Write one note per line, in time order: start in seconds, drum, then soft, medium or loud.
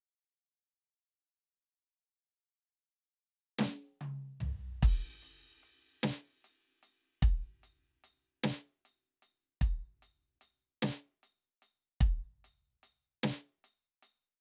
3.59 snare loud
3.61 snare loud
4.01 high tom medium
4.41 floor tom medium
4.83 kick loud
4.83 ride medium
4.83 crash medium
5.23 closed hi-hat soft
5.63 closed hi-hat soft
6.03 snare loud
6.03 closed hi-hat medium
6.45 closed hi-hat medium
6.83 closed hi-hat medium
7.23 kick loud
7.23 closed hi-hat medium
7.63 closed hi-hat medium
8.04 closed hi-hat medium
8.44 snare loud
8.44 closed hi-hat medium
8.85 closed hi-hat medium
9.22 closed hi-hat medium
9.61 kick medium
9.61 closed hi-hat medium
10.03 closed hi-hat medium
10.41 closed hi-hat medium
10.83 snare loud
10.83 closed hi-hat medium
11.23 closed hi-hat medium
11.62 closed hi-hat medium
12.01 kick loud
12.01 closed hi-hat soft
12.45 closed hi-hat medium
12.83 closed hi-hat medium
13.23 snare loud
13.23 closed hi-hat medium
13.64 closed hi-hat medium
14.03 closed hi-hat medium